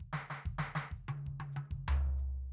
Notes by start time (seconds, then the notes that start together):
0.00 kick
0.13 snare
0.27 snare, hi-hat pedal
0.45 kick
0.58 snare
0.75 snare
0.90 kick, hi-hat pedal
1.08 high tom
1.26 kick
1.40 high tom
1.52 hi-hat pedal
1.56 high tom
1.71 kick
1.88 floor tom
2.18 hi-hat pedal